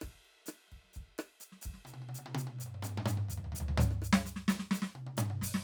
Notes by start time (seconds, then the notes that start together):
0.01 kick, cross-stick, hi-hat pedal, ride
0.09 kick
0.25 ride
0.46 cross-stick, hi-hat pedal, ride
0.68 snare
0.72 kick, ride
0.84 snare
0.89 snare
0.94 kick, hi-hat pedal, ride
1.19 cross-stick, ride
1.40 hi-hat pedal, ride
1.52 snare
1.62 kick, hi-hat pedal, ride
1.74 snare
1.85 kick, hi-hat pedal, high tom
1.94 high tom
2.02 high tom
2.09 high tom
2.15 hi-hat pedal
2.19 high tom
2.26 high tom
2.35 hi-hat pedal, high tom
2.47 high tom
2.59 hi-hat pedal, mid tom
2.66 mid tom
2.75 mid tom
2.83 hi-hat pedal, mid tom
2.89 mid tom
2.98 mid tom
3.06 hi-hat pedal, mid tom
3.18 mid tom
3.29 floor tom, hi-hat pedal
3.38 floor tom
3.45 floor tom
3.52 floor tom, hi-hat pedal
3.61 floor tom
3.69 floor tom
3.78 hi-hat pedal, floor tom
3.91 cross-stick
4.02 kick, cross-stick, hi-hat pedal
4.13 snare
4.26 snare, hi-hat pedal
4.36 snare
4.48 snare, hi-hat pedal
4.60 snare
4.71 snare, hi-hat pedal
4.82 snare
4.96 kick, high tom
5.07 high tom
5.17 hi-hat pedal, mid tom
5.30 high tom
5.42 kick, snare, hi-hat pedal
5.47 kick
5.55 snare